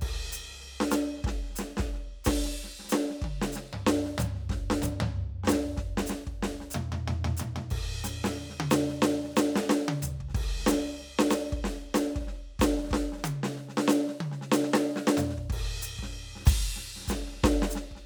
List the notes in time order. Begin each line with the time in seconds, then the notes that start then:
0.01 kick, ride
0.32 hi-hat pedal
0.62 kick, snare
0.81 snare
0.91 snare, hi-hat pedal
1.17 snare
1.22 kick, snare
1.25 snare
1.27 snare
1.42 snare
1.47 snare
1.50 snare
1.53 snare, hi-hat pedal
1.59 snare
1.77 kick, snare
1.94 snare
2.24 kick, snare, hi-hat pedal, crash
2.45 snare
2.64 snare
2.79 snare
2.85 snare
2.88 snare, hi-hat pedal
2.91 snare
3.10 snare
3.22 kick, high tom
3.42 snare
3.52 snare, hi-hat pedal
3.73 floor tom
3.81 kick
3.87 snare
4.05 snare
4.18 hi-hat pedal, floor tom
4.35 snare
4.39 snare
4.49 kick, snare
4.70 snare
4.82 hi-hat pedal, floor tom
5.00 floor tom
5.44 snare
5.48 snare, hi-hat pedal
5.52 snare
5.56 snare
5.61 snare
5.66 snare
5.70 snare
5.75 kick, cross-stick, snare
5.97 snare
6.06 snare, hi-hat pedal
6.27 kick
6.43 snare
6.61 snare
6.71 hi-hat pedal
6.75 mid tom
6.92 mid tom
7.08 mid tom
7.25 mid tom
7.37 hi-hat pedal, mid tom
7.56 mid tom
7.71 kick, ride
8.04 snare, hi-hat pedal
8.24 snare
8.37 high tom
8.50 snare
8.60 high tom
8.71 snare, hi-hat pedal
8.89 snare
9.02 snare
9.24 snare
9.29 snare
9.33 snare
9.36 snare, hi-hat pedal
9.56 snare
9.70 snare
9.88 high tom
10.02 floor tom, hi-hat pedal
10.20 kick
10.29 snare
10.35 kick, ride
10.59 snare
10.62 snare
10.64 snare
10.67 snare, hi-hat pedal
10.71 snare
10.84 snare
10.87 snare
10.89 snare
10.92 snare
10.94 snare
11.01 snare
11.19 snare
11.30 snare, hi-hat pedal
11.52 kick
11.64 snare
11.94 snare, hi-hat pedal
12.15 kick, snare
12.20 snare
12.24 snare
12.27 snare
12.59 kick, snare, hi-hat pedal
12.78 snare
12.84 snare
12.88 kick, snare
12.92 snare
13.12 snare
13.17 snare
13.23 snare, hi-hat pedal, high tom
13.43 snare
13.56 snare
13.69 snare
13.77 snare
13.88 snare, hi-hat pedal
14.08 snare
14.21 high tom
14.32 snare
14.41 snare
14.52 snare, hi-hat pedal
14.63 snare
14.74 snare
14.86 snare
14.96 snare
15.07 snare
15.17 hi-hat pedal, mid tom
15.30 snare
15.38 kick
15.50 kick, ride
15.82 hi-hat pedal
15.99 kick, snare
16.36 snare
16.40 snare
16.46 kick, snare, hi-hat pedal, crash
16.50 snare
16.76 snare
16.96 snare
17.01 snare
17.04 snare
17.08 kick, snare, hi-hat pedal
17.10 snare
17.27 snare
17.32 snare
17.35 snare
17.40 snare
17.44 kick, snare
17.62 snare
17.70 hi-hat pedal
17.76 snare
17.91 kick
17.96 snare